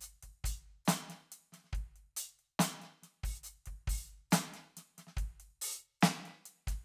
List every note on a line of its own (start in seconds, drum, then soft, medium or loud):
0.01 closed hi-hat soft
0.01 hi-hat pedal medium
0.23 kick soft
0.23 closed hi-hat soft
0.44 open hi-hat medium
0.44 kick medium
0.85 closed hi-hat loud
0.85 snare loud
0.85 hi-hat pedal soft
1.09 snare soft
1.09 closed hi-hat soft
1.32 snare soft
1.32 closed hi-hat medium
1.52 snare soft
1.52 closed hi-hat soft
1.56 snare soft
1.64 snare soft
1.67 snare soft
1.73 kick medium
1.73 snare soft
1.73 closed hi-hat soft
1.96 closed hi-hat soft
2.17 closed hi-hat loud
2.39 closed hi-hat soft
2.59 closed hi-hat loud
2.59 snare loud
2.82 snare soft
2.82 closed hi-hat soft
3.03 snare soft
3.03 closed hi-hat soft
3.24 open hi-hat medium
3.24 kick medium
3.44 closed hi-hat soft
3.44 hi-hat pedal medium
3.66 kick soft
3.66 closed hi-hat soft
3.88 open hi-hat medium
3.88 kick medium
3.88 ride soft
4.31 closed hi-hat loud
4.31 snare loud
4.31 hi-hat pedal soft
4.54 snare soft
4.54 closed hi-hat soft
4.77 snare soft
4.77 closed hi-hat medium
4.98 snare soft
4.98 closed hi-hat soft
5.07 snare soft
5.17 kick medium
5.17 closed hi-hat soft
5.40 closed hi-hat soft
5.62 open hi-hat loud
6.01 closed hi-hat medium
6.01 snare loud
6.01 hi-hat pedal soft
6.26 closed hi-hat soft
6.46 closed hi-hat medium
6.67 kick medium
6.67 snare soft
6.67 open hi-hat medium